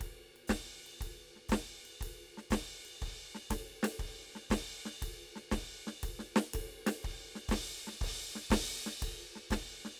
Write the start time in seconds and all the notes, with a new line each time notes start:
0.01 kick, ride
0.37 ride
0.48 kick, snare, hi-hat pedal, ride
0.87 ride
1.01 kick, ride
1.36 snare
1.49 kick, snare, hi-hat pedal, ride
1.86 ride
2.01 kick, ride
2.38 snare
2.51 kick, snare, hi-hat pedal, ride
2.86 ride
3.02 kick, ride
3.35 snare
3.51 kick, snare, hi-hat pedal, ride
3.83 snare, ride
4.00 kick, ride
4.36 snare
4.50 kick, snare, hi-hat pedal, ride
4.86 snare
5.02 kick, ride
5.36 snare
5.51 kick, snare, hi-hat pedal, ride
5.87 snare
6.04 kick, ride
6.20 snare
6.36 snare
6.53 kick, hi-hat pedal, ride
6.87 snare, ride
7.04 kick, ride
7.36 snare
7.49 kick, snare, hi-hat pedal, ride
7.88 snare
7.93 snare
8.02 kick, ride
8.36 snare
8.51 kick, snare, hi-hat pedal, ride
8.87 snare
9.02 kick, ride
9.36 snare
9.51 kick, snare, hi-hat pedal, ride
9.85 snare